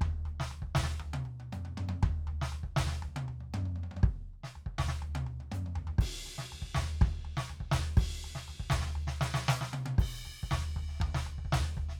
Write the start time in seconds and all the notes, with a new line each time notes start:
0.01 kick, floor tom
0.25 floor tom, hi-hat pedal
0.40 snare
0.51 floor tom
0.62 kick
0.75 snare, floor tom
0.83 snare
0.91 snare
1.00 floor tom
1.13 high tom
1.23 floor tom, hi-hat pedal
1.40 high tom
1.53 hi-hat pedal, mid tom
1.65 high tom
1.77 mid tom
1.89 mid tom
2.03 kick, floor tom
2.27 floor tom
2.42 snare
2.52 floor tom
2.63 kick
2.76 snare, floor tom
2.87 snare
2.92 snare
3.02 floor tom
3.16 high tom
3.28 floor tom
3.41 mid tom
3.53 hi-hat pedal, mid tom
3.65 mid tom
3.76 mid tom
3.83 mid tom
3.91 mid tom
3.97 mid tom
4.03 kick
4.33 floor tom
4.44 snare
4.56 floor tom
4.66 kick
4.78 snare, floor tom
4.88 snare
5.02 floor tom, hi-hat pedal
5.15 high tom
5.27 floor tom
5.40 high tom
5.52 hi-hat pedal, mid tom
5.66 mid tom
5.76 floor tom
5.87 floor tom
5.98 kick, ride
6.26 floor tom
6.38 snare
6.52 floor tom
6.62 kick
6.75 snare, floor tom
7.01 kick, snare, floor tom
7.25 floor tom
7.37 snare
7.49 floor tom
7.60 kick
7.72 snare, floor tom
7.97 kick, ride
8.24 floor tom
8.35 snare
8.48 floor tom
8.60 kick
8.70 snare, floor tom
8.81 snare
8.86 snare
8.95 floor tom
9.01 hi-hat pedal
9.07 snare
9.21 snare
9.34 snare
9.48 snare
9.61 snare
9.73 high tom
9.86 high tom
9.98 kick, crash
10.25 floor tom
10.43 kick
10.51 snare, floor tom
10.76 kick, floor tom
10.88 snare
10.94 snare
10.99 kick, snare, floor tom
11.15 snare
11.27 floor tom
11.38 kick
11.45 kick
11.53 snare, floor tom
11.77 kick, floor tom
11.89 snare